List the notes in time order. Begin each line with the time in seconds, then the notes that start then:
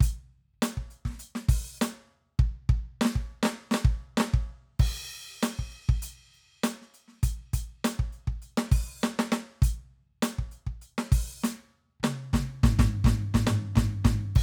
0.01 closed hi-hat, kick
0.54 kick
0.63 closed hi-hat, snare
0.78 kick
0.91 closed hi-hat
1.06 kick, snare
1.10 snare
1.13 snare
1.16 closed hi-hat, snare
1.36 snare
1.49 open hi-hat, kick
1.78 hi-hat pedal
1.82 closed hi-hat, snare
2.40 kick
2.70 kick
3.02 snare
3.05 snare
3.16 kick
3.43 snare
3.46 snare
3.72 snare
3.74 snare
3.85 kick
4.18 snare
4.20 snare
4.34 kick
4.80 kick, crash
5.43 closed hi-hat, snare
5.59 kick
5.72 closed hi-hat
5.89 kick
6.03 closed hi-hat
6.34 closed hi-hat
6.64 closed hi-hat, snare
6.82 snare
6.94 closed hi-hat
7.08 snare
7.12 snare
7.17 snare
7.23 closed hi-hat, kick
7.54 closed hi-hat, kick
7.85 closed hi-hat, snare
8.00 kick
8.13 closed hi-hat
8.28 kick, crash
8.32 ride
8.42 closed hi-hat
8.58 snare
8.72 open hi-hat, kick
9.02 snare, hi-hat pedal
9.19 snare
9.32 snare
9.62 closed hi-hat, kick
10.23 closed hi-hat, snare
10.39 kick
10.52 closed hi-hat
10.67 kick
10.72 ride
10.82 closed hi-hat
10.98 snare
11.12 open hi-hat, kick
11.42 closed hi-hat, snare, hi-hat pedal
12.00 kick, mid tom
12.04 snare
12.34 kick, snare, mid tom
12.64 kick, snare, floor tom
12.79 kick, snare, floor tom
13.05 kick, snare, floor tom
13.35 kick, snare, floor tom
13.47 snare, floor tom
13.76 kick, snare, floor tom
14.05 kick, snare, floor tom
14.36 kick, crash